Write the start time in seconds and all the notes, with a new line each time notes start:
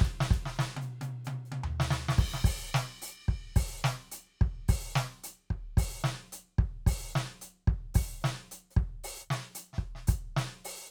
0.01 kick, ride
0.20 snare
0.31 kick, ride bell
0.46 snare
0.54 hi-hat pedal
0.59 snare
0.77 high tom
0.81 hi-hat pedal
1.01 hi-hat pedal, high tom
1.25 hi-hat pedal, high tom
1.45 hi-hat pedal
1.52 high tom
1.64 floor tom
1.80 snare
1.91 snare, hi-hat pedal
2.09 snare
2.18 kick, crash
2.34 snare
2.44 open hi-hat, kick
2.69 hi-hat pedal
2.74 snare
3.02 open hi-hat
3.06 hi-hat pedal
3.28 kick
3.56 open hi-hat, kick
3.80 snare, hi-hat pedal
4.12 closed hi-hat
4.41 kick
4.68 open hi-hat, kick
4.93 snare, hi-hat pedal
5.24 closed hi-hat
5.50 kick
5.77 open hi-hat, kick
6.01 snare, hi-hat pedal
6.32 closed hi-hat
6.58 kick
6.87 open hi-hat, kick
7.12 snare, hi-hat pedal
7.41 closed hi-hat
7.67 kick
7.94 open hi-hat, kick
8.21 snare, hi-hat pedal
8.51 closed hi-hat
8.71 hi-hat pedal
8.77 kick
9.04 open hi-hat
9.21 hi-hat pedal
9.30 snare
9.55 closed hi-hat
9.73 snare
9.78 kick
9.95 snare
10.07 closed hi-hat, kick
10.37 snare
10.65 open hi-hat
10.87 hi-hat pedal